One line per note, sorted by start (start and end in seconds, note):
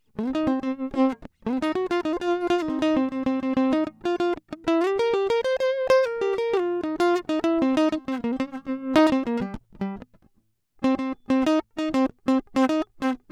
0.20 0.36 B3
0.36 0.57 D#4
0.49 0.62 C4
0.65 0.76 C4
1.01 1.11 C4
1.11 1.20 A#3
1.48 1.64 C4
1.64 1.75 D#4
1.77 1.89 F#4
1.92 2.04 F4
2.07 2.21 E4
2.23 2.52 F4
2.52 2.64 F4
2.64 2.83 D#4
2.70 2.86 C4
2.84 3.06 D#4
2.98 3.12 C4
3.14 3.28 C4
3.28 3.42 C4
3.45 3.56 C4
3.59 3.78 C4
3.74 3.87 D#4
4.07 4.19 F4
4.21 4.37 F4
4.69 4.83 E4
4.83 5.02 G4
5.01 5.20 A#4
5.15 5.32 G4
5.31 5.44 A#4
5.46 5.60 C5
5.62 5.92 C5
5.92 6.07 C5
6.07 6.35 A#4
6.23 6.47 G4
6.40 6.60 A#4
6.55 6.83 F4
6.85 6.99 D#4
7.01 7.25 F4
7.30 7.43 D#4
7.45 7.69 E4
7.63 7.80 C4
7.78 8.03 D#4
8.10 8.23 C4
8.26 8.39 B3
8.41 8.48 C4
8.69 9.01 C4
8.97 9.18 D#4
9.14 9.26 C4
9.29 9.51 A#3
9.43 9.62 G3
9.83 10.02 G3
10.86 10.98 C4
11.01 11.16 C4
11.31 11.49 C4
11.95 12.11 C4
12.29 12.43 C4
12.57 12.73 C4